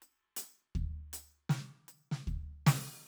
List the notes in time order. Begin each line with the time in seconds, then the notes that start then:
0.01 percussion
0.37 percussion
0.75 kick, percussion
1.13 percussion
1.49 snare, percussion
1.88 percussion
2.11 snare
2.27 kick, percussion
2.67 snare, percussion